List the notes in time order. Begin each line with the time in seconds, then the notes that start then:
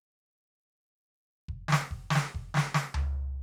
1.48 kick
1.68 snare
1.72 snare
1.91 kick
2.10 snare
2.15 snare
2.35 kick
2.54 snare
2.57 snare
2.74 snare
2.94 floor tom